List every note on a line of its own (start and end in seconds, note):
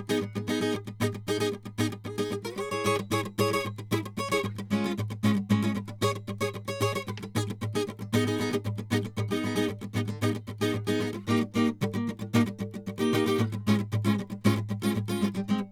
0.10 0.22 B3
0.10 0.24 D#4
0.10 0.25 G#4
0.37 0.52 G#4
0.49 0.62 B3
0.49 0.64 D#4
0.49 0.62 G#4
0.62 0.82 B3
0.62 0.82 D#4
0.62 0.83 G#4
1.02 1.12 B3
1.02 1.12 D#4
1.02 1.12 G#4
1.29 1.43 D#4
1.29 1.40 G#4
1.42 1.50 B3
1.42 1.52 D#4
1.42 1.52 G#4
1.79 1.90 B3
1.79 1.90 D#4
1.79 1.89 G#4
2.19 2.40 D#4
2.19 2.28 G#4
2.29 2.41 G#4
2.59 2.73 G#4
2.59 2.73 C#5
2.73 2.86 E4
2.73 2.87 G#4
2.73 2.88 C#5
2.86 3.00 E4
2.86 3.04 G#4
2.86 2.99 C#5
3.13 3.24 E4
3.13 3.24 G#4
3.13 3.31 C#5
3.40 3.56 E4
3.40 3.56 G#4
3.40 3.55 C#5
3.55 3.62 E4
3.55 3.71 G#4
3.55 3.67 C#5
3.93 4.05 E4
3.93 4.03 G#4
4.19 4.33 C#5
4.33 4.41 E4
4.33 4.42 G#4
4.33 4.45 C#5
4.72 4.88 G#3
4.72 4.87 C#4
4.72 4.87 F4
4.87 4.95 G#3
4.87 4.96 C#4
4.87 4.98 F4
5.25 5.44 G#3
5.25 5.37 C#4
5.25 5.36 F4
5.51 5.66 G#3
5.51 5.66 C#4
5.66 5.83 G#3
5.66 5.75 C#4
6.03 6.21 G#4
6.03 6.14 C#5
6.42 6.52 G#4
6.42 6.53 C#5
6.69 6.82 G#4
6.69 6.82 C#5
6.82 6.93 G#4
6.82 6.95 C#5
6.97 7.07 C#5
7.37 7.45 D#4
7.37 7.47 G#4
7.76 7.86 D#4
7.76 7.87 G#4
8.15 8.29 B3
8.15 8.25 D#4
8.15 8.29 G#4
8.29 8.40 B3
8.29 8.40 D#4
8.29 8.40 G#4
8.40 8.62 B3
8.40 8.61 D#4
8.40 8.51 G#4
8.92 9.02 B3
8.92 9.02 D#4
8.92 9.02 G#4
9.32 9.45 B3
9.32 9.45 D#4
9.32 9.55 G#4
9.45 9.57 B3
9.45 9.58 D#4
9.57 9.77 B3
9.57 9.76 D#4
9.57 9.65 G#4
9.65 9.86 G#4
9.96 10.05 B3
9.96 10.05 D#4
9.96 10.05 G4
10.23 10.34 B3
10.23 10.34 D#4
10.23 10.32 G#4
10.62 10.81 B3
10.62 10.81 D#4
10.62 10.75 G#4
10.88 11.01 B3
10.88 11.02 D#4
10.88 11.02 G#4
11.01 11.12 B3
11.01 11.12 D#4
11.01 11.12 G#4
11.29 11.47 A#3
11.29 11.47 D#4
11.29 11.48 G4
11.56 11.76 A#3
11.56 11.74 D#4
11.56 11.75 G4
11.97 12.17 A#3
12.35 12.47 A#3
12.35 12.45 D#4
13.00 13.14 A#3
13.00 13.15 D#4
13.00 13.15 G4
13.14 13.30 A#3
13.14 13.27 D#4
13.14 13.29 G4
13.27 13.39 A#3
13.27 13.45 D#4
13.27 13.49 G4
13.40 13.51 A3
13.69 13.81 G#3
13.69 13.79 C#4
13.69 13.77 F4
14.07 14.19 G#3
14.07 14.19 C#4
14.07 14.19 F4
14.46 14.65 G#3
14.46 14.58 C#4
14.46 14.55 F4
14.85 15.03 G#3
14.85 14.97 C#4
14.85 14.98 F4
15.10 15.22 G#3
15.10 15.22 C#4
15.10 15.24 F4
15.23 15.33 G#3
15.23 15.32 C4
15.23 15.33 F4
15.38 15.50 G3
15.50 15.65 G#3
15.50 15.66 C4
15.50 15.65 D#4